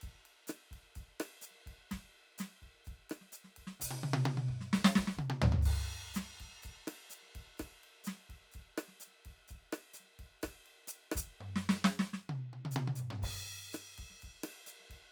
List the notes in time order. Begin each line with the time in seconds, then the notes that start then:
0.01 kick, hi-hat pedal, ride
0.08 kick
0.25 ride
0.47 cross-stick, hi-hat pedal, ride
0.71 kick, ride
0.76 kick
0.95 kick, hi-hat pedal, ride
1.01 kick
1.20 cross-stick, ride
1.41 hi-hat pedal, ride
1.51 snare
1.66 kick, ride
1.71 kick
1.90 kick, snare, hi-hat pedal, ride
1.98 kick
2.38 snare, hi-hat pedal, ride
2.62 kick, ride
2.85 kick, hi-hat pedal, ride
3.10 cross-stick, ride
3.21 snare
3.32 hi-hat pedal, ride
3.44 snare
3.56 kick, ride
3.67 snare
3.80 kick, hi-hat pedal, high tom
3.91 high tom
4.03 high tom
4.14 high tom
4.26 high tom
4.37 high tom
4.48 kick, mid tom
4.61 snare
4.73 kick, snare
4.85 snare
4.96 kick, snare
5.03 kick
5.07 snare
5.17 kick, high tom
5.22 kick
5.30 high tom
5.42 floor tom
5.52 floor tom
5.62 kick, floor tom, hi-hat pedal
5.66 crash
5.74 kick
6.14 snare, hi-hat pedal, ride
6.40 kick, ride
6.48 snare
6.62 kick, hi-hat pedal, ride
6.70 kick
6.87 cross-stick, ride
7.10 hi-hat pedal
7.22 snare
7.35 kick, ride
7.40 kick
7.57 kick, cross-stick, hi-hat pedal, ride
7.65 kick
7.84 ride
8.04 snare, hi-hat pedal, ride
8.29 kick, ride
8.43 snare
8.51 kick, hi-hat pedal, ride
8.60 kick
8.78 cross-stick, ride
8.88 snare
9.00 hi-hat pedal, ride
9.07 snare
9.25 kick, ride
9.48 kick, hi-hat pedal, ride
9.56 kick
9.73 cross-stick, ride
9.94 hi-hat pedal, ride
10.00 snare
10.04 snare
10.19 kick, ride
10.41 kick, cross-stick, hi-hat pedal, ride
10.49 kick
10.66 ride
10.87 hi-hat pedal, ride
11.12 kick, cross-stick, ride
11.17 hi-hat pedal
11.22 kick
11.41 mid tom
11.56 snare
11.69 snare
11.84 snare
11.99 snare
12.13 snare
12.29 high tom
12.53 high tom
12.65 high tom
12.71 hi-hat pedal
12.76 high tom
12.88 high tom
12.95 hi-hat pedal, mid tom
13.10 mid tom
13.22 kick, hi-hat pedal, crash
13.29 kick
13.73 cross-stick, hi-hat pedal, ride
13.98 kick, ride
14.10 snare
14.20 kick, hi-hat pedal, ride
14.28 kick
14.44 cross-stick, ride
14.66 hi-hat pedal, ride
14.80 snare
14.90 kick, ride